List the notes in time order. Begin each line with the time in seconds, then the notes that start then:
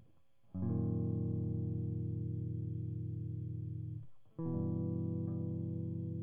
0.57 F#2
0.64 A#2
0.70 D#3
4.40 E3
4.47 B2
4.56 G2